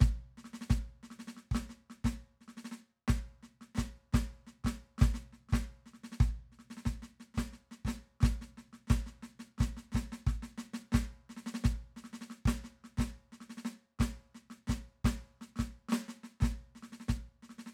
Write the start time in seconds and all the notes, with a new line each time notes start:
0.01 kick, snare
0.38 snare
0.45 snare
0.54 snare
0.61 snare
0.70 kick, snare
1.03 snare
1.11 snare
1.19 snare
1.28 snare
1.37 snare
1.51 kick, snare
1.55 snare
1.70 snare
1.90 snare
2.04 kick, snare
2.41 snare
2.48 snare
2.57 snare
2.65 snare
2.72 snare
3.08 kick, snare
3.43 snare
3.61 snare
3.75 snare
3.78 kick, snare
4.13 kick, snare
4.15 snare
4.47 snare
4.64 kick, snare
4.66 snare
4.98 snare
5.01 kick, snare
5.14 snare
5.33 snare
5.49 kick, snare
5.54 snare
5.86 snare
5.94 snare
6.04 snare
6.12 snare
6.20 kick, snare
6.52 snare
6.59 snare
6.70 snare
6.77 snare
6.86 kick, snare
7.02 snare
7.20 snare
7.34 kick, snare
7.38 snare
7.53 snare
7.71 snare
7.85 kick, snare
7.88 snare
8.21 kick, snare
8.24 snare
8.41 snare
8.58 snare
8.73 snare
8.87 snare
8.90 kick, snare
9.06 snare
9.23 snare
9.39 snare
9.58 kick, snare
9.61 snare
9.77 snare
9.92 kick, snare
9.96 snare
10.12 snare
10.27 kick, snare
10.43 snare
10.58 snare
10.74 snare
10.92 kick, snare
10.94 snare
11.30 snare
11.37 snare
11.46 snare
11.54 snare
11.64 kick, snare
11.97 snare
12.04 snare
12.13 snare
12.21 snare
12.30 snare
12.46 kick, snare
12.48 snare
12.64 snare
12.84 snare
12.98 kick, snare
13.00 snare
13.32 snare
13.41 snare
13.50 snare
13.57 snare
13.65 snare
13.99 kick, snare
14.01 snare
14.35 snare
14.50 snare
14.67 kick, snare
14.70 snare
15.05 kick, snare
15.41 snare
15.56 snare
15.59 kick, snare
15.89 snare
15.92 snare
16.08 snare
16.24 snare
16.40 kick, snare
16.44 snare
16.75 snare
16.83 snare
16.92 snare
17.00 snare
17.09 kick, snare
17.43 snare
17.50 snare
17.59 snare
17.66 snare